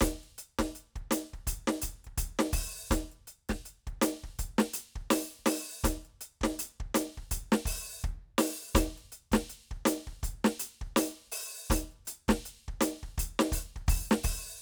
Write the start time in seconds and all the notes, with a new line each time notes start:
0.01 open hi-hat, kick, snare, hi-hat pedal
0.23 closed hi-hat
0.38 closed hi-hat
0.59 kick, snare, closed hi-hat
0.75 closed hi-hat
0.96 kick, closed hi-hat
1.11 closed hi-hat, snare
1.34 kick, closed hi-hat
1.47 closed hi-hat, kick
1.68 snare
1.82 closed hi-hat, kick
2.05 kick, closed hi-hat
2.18 closed hi-hat, kick
2.25 hi-hat pedal
2.39 snare
2.53 open hi-hat, kick
2.91 closed hi-hat, kick, snare, hi-hat pedal
3.12 closed hi-hat
3.27 closed hi-hat
3.49 kick, snare, closed hi-hat
3.66 closed hi-hat
3.87 kick, closed hi-hat
4.02 closed hi-hat, snare
4.24 kick, closed hi-hat
4.39 closed hi-hat, kick
4.59 snare
4.74 closed hi-hat
4.96 kick
5.11 open hi-hat, snare
5.39 kick
5.46 open hi-hat, snare
5.84 closed hi-hat, kick, snare, hi-hat pedal
6.05 closed hi-hat
6.21 closed hi-hat
6.41 kick, snare, closed hi-hat
6.59 closed hi-hat
6.80 kick
6.95 closed hi-hat, snare
7.18 kick
7.31 closed hi-hat, kick
7.52 snare
7.66 open hi-hat, kick
8.01 kick, hi-hat pedal
8.08 crash, ride
8.38 open hi-hat, snare
8.75 open hi-hat, kick, snare, hi-hat pedal
8.95 kick, closed hi-hat
9.12 closed hi-hat
9.32 kick, snare, closed hi-hat
9.50 closed hi-hat
9.71 kick
9.86 closed hi-hat, snare
10.07 kick
10.23 closed hi-hat, kick
10.45 snare
10.60 closed hi-hat
10.81 kick
10.96 open hi-hat, snare, hi-hat pedal
11.27 kick
11.32 open hi-hat
11.70 open hi-hat, kick, snare
11.74 hi-hat pedal
11.91 closed hi-hat
12.05 closed hi-hat, hi-hat pedal
12.28 kick, snare, closed hi-hat
12.46 closed hi-hat
12.68 kick, closed hi-hat
12.81 closed hi-hat, snare
13.03 kick, closed hi-hat
13.18 closed hi-hat, kick
13.39 snare
13.52 open hi-hat, kick
13.57 hi-hat pedal
13.76 kick, closed hi-hat
13.87 open hi-hat, kick, hi-hat pedal
14.11 snare
14.24 open hi-hat, kick